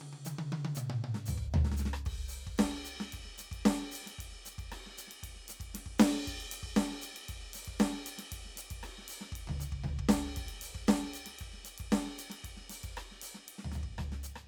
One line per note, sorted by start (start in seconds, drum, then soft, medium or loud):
0.01 high tom medium
0.13 high tom medium
0.25 hi-hat pedal loud
0.25 high tom medium
0.38 high tom loud
0.52 high tom loud
0.65 high tom loud
0.75 hi-hat pedal loud
0.75 mid tom medium
0.90 mid tom loud
1.04 mid tom medium
1.14 snare soft
1.26 floor tom medium
1.26 hi-hat pedal medium
1.37 kick soft
1.50 floor tom loud
1.50 hi-hat pedal soft
1.65 snare soft
1.72 snare soft
1.77 snare soft
1.77 hi-hat pedal medium
1.85 snare medium
1.93 cross-stick medium
2.05 kick medium
2.05 crash medium
2.28 hi-hat pedal medium
2.47 kick soft
2.58 snare medium
2.58 ride loud
2.75 snare soft
2.85 hi-hat pedal medium
3.00 snare medium
3.12 kick soft
3.12 ride medium
3.24 snare soft
3.38 snare soft
3.38 hi-hat pedal medium
3.38 ride medium
3.51 kick soft
3.51 ride soft
3.65 snare loud
3.65 ride medium
3.82 snare soft
3.91 hi-hat pedal medium
3.91 ride medium
4.06 snare soft
4.06 ride medium
4.18 kick soft
4.18 ride medium
4.31 snare soft
4.45 snare soft
4.45 hi-hat pedal loud
4.45 ride soft
4.58 kick soft
4.58 ride soft
4.72 cross-stick medium
4.72 ride medium
4.86 snare soft
4.98 hi-hat pedal loud
4.98 ride medium
5.07 snare soft
5.07 ride medium
5.23 kick soft
5.23 ride medium
5.35 snare soft
5.48 snare soft
5.48 hi-hat pedal loud
5.48 ride medium
5.60 kick soft
5.60 ride soft
5.74 snare soft
5.74 ride medium
5.86 kick soft
5.99 snare loud
5.99 hi-hat pedal loud
5.99 ride loud
6.15 snare soft
6.27 kick soft
6.27 ride medium
6.40 snare soft
6.40 ride soft
6.51 hi-hat pedal medium
6.51 ride medium
6.63 kick soft
6.75 snare medium
6.75 hi-hat pedal soft
6.75 ride loud
6.90 snare soft
7.01 hi-hat pedal medium
7.01 ride medium
7.14 snare soft
7.14 ride medium
7.27 kick soft
7.27 hi-hat pedal soft
7.27 ride medium
7.40 snare soft
7.53 snare soft
7.53 hi-hat pedal loud
7.53 ride medium
7.65 kick soft
7.65 ride medium
7.79 snare loud
7.79 hi-hat pedal soft
7.79 ride loud
7.93 snare soft
8.06 hi-hat pedal medium
8.06 ride medium
8.18 snare soft
8.18 ride medium
8.32 kick soft
8.32 ride medium
8.45 snare soft
8.56 snare soft
8.56 hi-hat pedal loud
8.56 ride medium
8.70 kick soft
8.70 ride medium
8.82 cross-stick medium
8.82 hi-hat pedal soft
8.82 ride medium
8.98 snare soft
9.08 hi-hat pedal loud
9.08 ride medium
9.21 snare soft
9.32 kick soft
9.32 ride medium
9.47 floor tom medium
9.47 high tom medium
9.60 hi-hat pedal medium
9.60 high tom medium
9.72 kick soft
9.83 floor tom medium
9.83 hi-hat pedal soft
9.83 high tom medium
9.99 kick medium
10.09 snare loud
10.09 hi-hat pedal medium
10.09 ride medium
10.26 snare soft
10.35 kick medium
10.35 hi-hat pedal soft
10.35 ride medium
10.48 ride medium
10.53 snare soft
10.61 hi-hat pedal medium
10.61 ride medium
10.75 kick soft
10.87 snare loud
10.87 hi-hat pedal soft
10.87 ride medium
11.03 snare soft
11.14 hi-hat pedal medium
11.14 ride medium
11.26 snare soft
11.26 ride medium
11.39 kick soft
11.39 hi-hat pedal soft
11.39 ride medium
11.53 snare soft
11.64 snare soft
11.64 hi-hat pedal medium
11.64 ride medium
11.78 kick soft
11.78 ride medium
11.91 snare medium
11.91 hi-hat pedal soft
11.91 ride medium
12.06 snare soft
12.18 hi-hat pedal medium
12.18 ride medium
12.30 snare soft
12.30 ride medium
12.43 kick soft
12.43 hi-hat pedal soft
12.43 ride medium
12.57 snare soft
12.69 snare soft
12.69 hi-hat pedal medium
12.69 ride medium
12.83 kick soft
12.83 ride medium
12.97 cross-stick medium
12.97 ride medium
13.11 snare soft
13.22 hi-hat pedal loud
13.22 ride medium
13.34 snare soft
13.48 ride medium
13.58 snare soft
13.64 floor tom medium
13.72 snare soft
13.72 floor tom medium
13.72 hi-hat pedal soft
13.83 kick soft
13.98 cross-stick medium
13.98 floor tom medium
14.12 snare soft
14.23 hi-hat pedal medium
14.36 cross-stick medium